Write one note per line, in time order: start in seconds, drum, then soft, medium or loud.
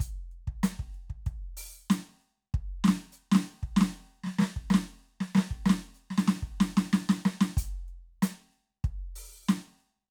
0.01 closed hi-hat loud
0.01 kick medium
0.32 closed hi-hat soft
0.48 kick medium
0.64 closed hi-hat loud
0.64 snare loud
0.80 kick medium
0.95 closed hi-hat soft
1.11 kick soft
1.27 kick medium
1.27 closed hi-hat soft
1.58 open hi-hat loud
1.91 closed hi-hat loud
1.91 snare loud
1.91 hi-hat pedal medium
2.22 closed hi-hat soft
2.55 kick medium
2.85 snare loud
2.89 snare loud
3.13 hi-hat pedal medium
3.33 snare loud
3.36 snare loud
3.64 kick medium
3.77 snare loud
3.82 snare loud
4.25 snare medium
4.27 snare medium
4.40 snare loud
4.43 snare loud
4.57 kick medium
4.71 snare loud
4.75 snare loud
5.21 snare loud
5.34 snare loud
5.34 hi-hat pedal soft
5.38 snare loud
5.52 kick medium
5.67 snare loud
5.70 snare loud
5.95 hi-hat pedal soft
6.11 snare medium
6.19 snare loud
6.27 snare loud
6.27 hi-hat pedal soft
6.43 kick medium
6.61 snare loud
6.78 snare loud
6.94 snare loud
7.10 snare loud
7.26 snare loud
7.42 snare loud
7.58 closed hi-hat loud
7.58 kick medium
7.89 closed hi-hat soft
8.23 closed hi-hat loud
8.23 snare loud
8.54 closed hi-hat soft
8.85 kick medium
8.85 closed hi-hat soft
9.17 open hi-hat loud
9.49 snare loud
9.49 closed hi-hat medium
9.49 hi-hat pedal medium
9.81 closed hi-hat soft